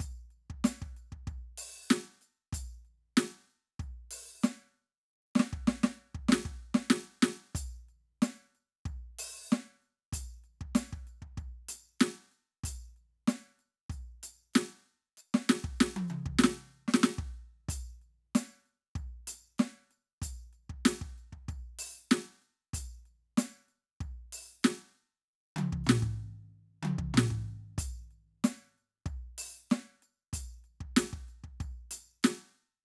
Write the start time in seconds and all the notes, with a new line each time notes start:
0.01 kick, percussion
0.32 percussion
0.51 kick
0.65 snare, percussion
0.83 kick
0.98 percussion
1.13 kick
1.28 kick, percussion
1.59 percussion
1.91 snare, percussion
2.22 percussion
2.54 kick, percussion
2.86 percussion
3.18 snare, percussion
3.51 percussion
3.80 kick, percussion
4.12 percussion
4.44 snare, percussion
5.36 snare, percussion
5.40 snare
5.54 kick
5.68 snare
5.84 snare
6.16 kick
6.30 snare
6.33 snare
6.46 kick
6.75 snare
6.91 snare
7.23 snare
7.56 kick, percussion
7.90 percussion
8.23 snare, percussion
8.56 percussion
8.86 kick, percussion
9.20 percussion
9.51 snare, percussion
9.54 percussion
9.83 percussion
10.14 kick, percussion
10.45 percussion
10.62 kick
10.76 snare, percussion
10.94 kick
11.08 percussion
11.23 kick
11.38 kick, percussion
11.70 percussion
12.01 snare, percussion
12.02 percussion
12.33 percussion
12.65 kick, percussion
12.97 percussion
13.29 snare, percussion
13.60 percussion
13.91 kick, percussion
14.24 percussion
14.55 snare, percussion
14.57 percussion
15.18 percussion
15.35 snare
15.47 snare, percussion
15.65 kick
15.77 percussion
15.81 snare
15.97 high tom
16.09 mid tom, percussion
16.27 kick
16.40 snare
16.45 snare
16.89 snare
16.95 snare
17.04 snare
17.19 kick
17.70 kick, percussion
18.03 percussion
18.36 snare, percussion
18.67 percussion
18.96 kick, percussion
19.28 percussion
19.59 snare, percussion
19.61 percussion
19.92 percussion
20.23 kick, percussion
20.54 percussion
20.71 kick
20.86 snare, percussion
21.02 kick
21.19 percussion
21.34 kick
21.49 kick, percussion
21.80 percussion
22.12 snare, percussion
22.43 percussion
22.74 kick, percussion
23.07 percussion
23.39 snare, percussion
23.69 percussion
24.02 kick, percussion
24.34 percussion
24.64 snare, percussion
24.66 percussion
25.57 mid tom, high tom, percussion
25.73 kick
25.85 floor tom, percussion
25.90 snare
26.03 kick
26.84 mid tom, high tom
26.99 kick
27.15 snare, floor tom
27.31 kick
27.79 kick, percussion
28.12 percussion
28.45 snare, percussion
28.79 percussion
29.07 kick, percussion
29.39 percussion
29.71 snare, percussion
29.73 percussion
30.03 percussion
30.34 kick, percussion
30.65 percussion
30.82 kick
30.98 snare, percussion
31.14 kick
31.29 percussion
31.45 kick
31.61 kick, percussion
31.92 percussion
32.24 snare, percussion